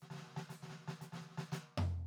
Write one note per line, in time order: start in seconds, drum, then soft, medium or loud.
0.00 snare soft
0.00 hi-hat pedal soft
0.10 snare soft
0.14 snare soft
0.16 snare soft
0.21 snare soft
0.27 snare soft
0.31 snare soft
0.36 snare medium
0.49 snare soft
0.49 hi-hat pedal soft
0.62 snare soft
0.66 snare soft
0.70 snare soft
0.74 snare soft
0.78 snare soft
0.82 snare soft
0.87 snare medium
1.01 snare soft
1.01 hi-hat pedal soft
1.12 snare soft
1.14 snare soft
1.21 snare soft
1.25 snare soft
1.30 snare soft
1.34 snare soft
1.37 snare medium
1.52 snare medium
1.52 hi-hat pedal soft
1.77 floor tom loud